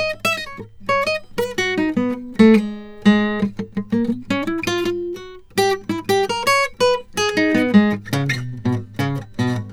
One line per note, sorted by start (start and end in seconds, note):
0.00 0.16 D#5
0.25 0.35 E5
0.35 0.45 D#5
0.46 0.63 C#5
0.90 1.04 C#5
1.04 1.23 D#5
1.39 1.56 B4
1.59 1.94 F#4
1.78 1.98 D#4
1.98 2.21 B3
2.40 2.55 A3
2.56 3.04 G#3
3.06 3.48 G#3
3.78 3.91 G#3
3.94 4.06 A#3
4.06 4.17 A#3
4.31 4.46 C#4
4.49 4.64 E4
4.68 4.87 F4
4.87 5.14 F4
5.14 5.44 F#4
5.58 5.84 G4
5.90 6.05 E4
6.10 6.30 G4
6.30 6.46 A#4
6.48 6.71 C#5
6.81 7.00 B4
7.18 7.31 G#4
7.18 7.37 G#4
7.38 7.70 D#4
7.56 7.76 B3
7.75 8.00 G#3
8.14 8.28 C#3
8.31 8.62 B2
8.66 8.82 B2
9.00 9.26 C#3
9.40 9.65 B2